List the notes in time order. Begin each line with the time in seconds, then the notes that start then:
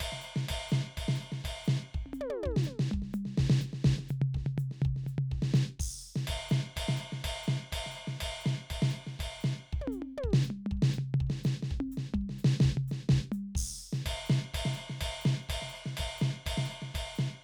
0.01 kick, ride bell
0.13 snare
0.22 hi-hat pedal, ride
0.37 snare
0.49 kick, ride bell
0.57 kick
0.69 snare, hi-hat pedal
0.98 kick, ride bell
1.09 snare
1.16 hi-hat pedal
1.22 ride
1.33 snare
1.45 kick, ride
1.65 snare, hi-hat pedal
1.95 kick
2.02 kick
2.07 high tom
2.14 hi-hat pedal, high tom
2.21 high tom
2.31 high tom
2.44 kick, high tom
2.52 kick
2.57 snare
2.64 hi-hat pedal, high tom
2.80 snare
2.92 kick, mid tom
3.01 kick, snare
3.14 hi-hat pedal, mid tom
3.26 snare
3.39 kick, snare
3.46 kick
3.51 snare
3.61 snare, hi-hat pedal
3.74 snare
3.85 kick, snare
3.93 kick
3.99 snare
4.09 floor tom, hi-hat pedal
4.22 floor tom
4.35 kick, snare
4.42 kick
4.47 floor tom
4.59 hi-hat pedal, floor tom
4.72 snare
4.83 kick, floor tom
4.97 snare
5.05 snare, hi-hat pedal, floor tom
5.19 floor tom
5.32 kick, snare
5.39 kick
5.43 snare
5.55 snare, hi-hat pedal
5.80 kick, crash
5.91 kick
6.02 hi-hat pedal
6.17 snare
6.28 kick, ride bell
6.36 kick
6.49 snare, hi-hat pedal
6.77 kick, ride bell
6.83 kick
6.89 snare
6.97 hi-hat pedal, ride
7.13 snare
7.25 kick, ride bell
7.31 kick
7.44 hi-hat pedal
7.49 snare
7.73 kick, ride bell
7.79 kick
7.87 snare
7.92 hi-hat pedal, ride
8.08 snare
8.21 kick, ride bell
8.41 hi-hat pedal
8.47 snare
8.71 kick, ride bell
8.77 kick
8.83 snare
8.90 hi-hat pedal
8.94 ride
9.08 snare
9.20 kick, ride bell
9.26 kick
9.41 snare, hi-hat pedal
9.73 kick
9.81 kick, high tom
9.88 high tom
9.93 hi-hat pedal
10.03 high tom
10.18 high tom
10.24 kick
10.31 kick, snare
10.42 snare, hi-hat pedal
10.51 mid tom
10.67 mid tom
10.72 kick
10.78 kick
10.83 snare
10.90 snare, hi-hat pedal
10.99 floor tom
11.15 floor tom
11.21 kick
11.28 kick, snare
11.44 snare, hi-hat pedal
11.64 snare
11.72 kick
11.78 kick, high tom
11.93 hi-hat pedal
11.98 snare
12.15 kick, mid tom
12.22 kick
12.30 snare
12.39 hi-hat pedal
12.45 snare
12.61 snare
12.65 kick
12.72 kick
12.78 floor tom
12.89 snare, hi-hat pedal
13.10 kick, snare
13.19 kick
13.33 hi-hat pedal, mid tom
13.56 kick, crash
13.68 kick
13.79 hi-hat pedal
13.94 snare
14.07 kick, ride bell
14.13 kick
14.26 hi-hat pedal
14.31 snare
14.55 kick, ride bell
14.61 kick
14.66 snare
14.74 hi-hat pedal, ride
14.91 snare
15.02 kick, ride bell
15.08 kick
15.22 hi-hat pedal
15.26 snare
15.43 hi-hat pedal
15.50 kick, ride bell
15.56 kick
15.63 snare
15.70 hi-hat pedal
15.76 ride
15.87 snare
15.98 kick, ride bell
16.06 kick
16.18 hi-hat pedal
16.22 snare
16.47 kick, ride bell
16.53 kick
16.58 snare
16.66 hi-hat pedal
16.71 ride
16.83 snare
16.95 kick, ride bell
17.16 snare, hi-hat pedal